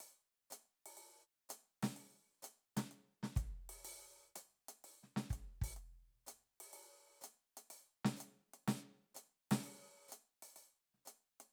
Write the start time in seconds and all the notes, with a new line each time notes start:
0.01 open hi-hat
0.51 closed hi-hat, hi-hat pedal
0.86 open hi-hat
0.98 open hi-hat
1.50 closed hi-hat, hi-hat pedal
1.83 snare, open hi-hat
1.97 open hi-hat
2.43 closed hi-hat, hi-hat pedal
2.77 snare, open hi-hat
2.92 open hi-hat
3.23 snare
3.36 kick, closed hi-hat, hi-hat pedal
3.70 open hi-hat
3.85 open hi-hat
4.36 hi-hat pedal, open hi-hat
4.69 closed hi-hat
4.85 open hi-hat
5.04 snare
5.17 snare
5.30 kick, closed hi-hat, hi-hat pedal
5.62 kick, open hi-hat
5.77 open hi-hat
6.27 closed hi-hat, hi-hat pedal
6.61 open hi-hat
6.74 open hi-hat
7.22 closed hi-hat, hi-hat pedal
7.58 closed hi-hat
7.71 open hi-hat
8.05 snare
8.17 closed hi-hat, hi-hat pedal
8.54 closed hi-hat
8.68 snare, open hi-hat
9.15 closed hi-hat, hi-hat pedal
9.52 snare, open hi-hat
9.64 open hi-hat
10.09 closed hi-hat, hi-hat pedal
10.43 open hi-hat
10.57 open hi-hat
10.94 snare
10.97 snare
11.06 closed hi-hat, hi-hat pedal
11.41 closed hi-hat